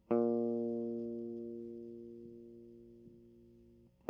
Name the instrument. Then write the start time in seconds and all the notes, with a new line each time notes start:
electric guitar
0.12 A#2